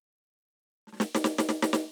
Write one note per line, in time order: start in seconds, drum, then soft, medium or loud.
0.87 snare soft
0.93 snare soft
0.96 snare soft
1.00 snare loud
1.15 snare loud
1.24 snare loud
1.39 snare loud
1.49 snare loud
1.62 snare loud
1.73 snare loud